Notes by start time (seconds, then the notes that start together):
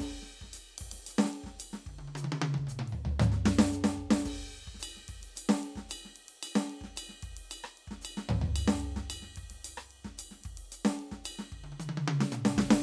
0.01 kick, hi-hat pedal, crash
0.07 kick
0.23 snare
0.42 kick, snare
0.47 kick
0.54 hi-hat pedal, ride bell
0.79 kick, ride
0.87 kick
0.92 snare, ride
1.07 hi-hat pedal, ride bell
1.19 snare
1.25 snare
1.34 ride
1.44 kick, snare
1.49 kick
1.60 hi-hat pedal, ride bell
1.74 snare
1.87 kick, high tom
1.93 kick
1.99 high tom
2.08 high tom
2.16 hi-hat pedal, high tom
2.25 high tom
2.33 high tom
2.42 high tom
2.55 kick, high tom
2.68 hi-hat pedal, mid tom
2.80 mid tom
2.88 ride
2.93 floor tom
3.06 floor tom
3.20 hi-hat pedal, floor tom
3.32 snare
3.45 snare, hi-hat pedal
3.59 snare
3.73 hi-hat pedal
3.85 snare
3.98 kick
4.11 snare
4.20 snare
4.25 kick, hi-hat pedal, crash
4.34 cross-stick
4.39 kick
4.68 kick
4.75 snare
4.80 hi-hat pedal, ride bell
4.97 snare
5.09 kick, ride
5.15 kick
5.21 snare, ride
5.25 snare
5.36 hi-hat pedal, ride bell
5.50 snare
5.64 ride
5.76 kick, snare
5.90 hi-hat pedal, ride bell
6.06 snare
6.12 snare
6.17 ride
6.29 ride
6.43 hi-hat pedal, ride bell
6.56 snare
6.70 ride
6.82 kick, snare
6.97 hi-hat pedal, ride bell
7.10 snare
7.23 kick, ride
7.33 kick, snare
7.37 ride
7.51 hi-hat pedal, ride bell
7.65 cross-stick
7.78 ride
7.88 kick, snare
8.02 hi-hat pedal, ride bell
8.18 snare
8.30 kick, floor tom
8.37 kick
8.42 floor tom
8.56 hi-hat pedal, ride bell
8.68 snare
8.81 ride
8.97 kick, snare
9.11 hi-hat pedal, ride bell
9.23 snare
9.37 kick, ride
9.43 kick
9.51 snare, ride
9.65 hi-hat pedal, ride bell
9.78 cross-stick
9.91 ride
10.05 kick, snare
10.19 hi-hat pedal, ride bell
10.32 snare
10.41 snare, ride
10.46 kick, snare
10.51 snare
10.55 kick, ride
10.72 hi-hat pedal, ride bell
10.85 snare
11.00 ride
11.12 kick, snare
11.25 hi-hat pedal, ride bell
11.39 snare
11.52 kick, high tom
11.64 high tom
11.73 high tom
11.80 hi-hat pedal, high tom
11.90 high tom
11.98 high tom
12.08 high tom
12.21 snare
12.32 hi-hat pedal, mid tom
12.46 snare
12.57 kick, snare
12.71 snare